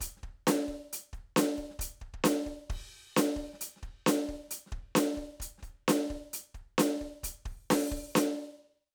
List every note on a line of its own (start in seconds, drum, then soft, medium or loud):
0.01 closed hi-hat loud
0.01 kick soft
0.17 snare soft
0.24 kick soft
0.24 closed hi-hat soft
0.47 closed hi-hat loud
0.47 snare loud
0.55 snare soft
0.68 kick soft
0.68 closed hi-hat soft
0.93 closed hi-hat loud
1.13 kick soft
1.13 closed hi-hat soft
1.37 closed hi-hat loud
1.37 snare loud
1.42 snare medium
1.57 closed hi-hat soft
1.57 kick soft
1.71 snare soft
1.80 closed hi-hat loud
1.80 kick medium
2.01 kick soft
2.01 closed hi-hat soft
2.14 kick soft
2.24 closed hi-hat loud
2.24 snare loud
2.47 kick soft
2.47 closed hi-hat soft
2.70 kick medium
2.70 crash medium
2.89 closed hi-hat soft
3.17 closed hi-hat loud
3.17 snare loud
3.37 kick soft
3.37 closed hi-hat soft
3.54 snare soft
3.61 closed hi-hat loud
3.77 snare soft
3.83 kick soft
3.83 closed hi-hat soft
4.07 closed hi-hat loud
4.07 snare loud
4.29 kick soft
4.48 closed hi-hat loud
4.48 snare soft
4.67 snare soft
4.72 kick medium
4.72 closed hi-hat soft
4.96 closed hi-hat loud
4.96 snare loud
5.14 snare soft
5.18 kick soft
5.40 closed hi-hat loud
5.40 kick soft
5.58 snare soft
5.63 closed hi-hat soft
5.63 kick soft
5.88 closed hi-hat loud
5.88 snare loud
6.11 kick soft
6.11 closed hi-hat soft
6.34 closed hi-hat loud
6.55 kick soft
6.55 closed hi-hat soft
6.79 closed hi-hat loud
6.79 snare loud
7.02 kick soft
7.24 closed hi-hat loud
7.24 kick soft
7.46 open hi-hat soft
7.46 kick medium
7.71 open hi-hat loud
7.71 kick soft
7.71 snare loud
7.92 kick medium
7.92 open hi-hat soft
8.16 open hi-hat loud
8.16 snare loud
8.16 hi-hat pedal medium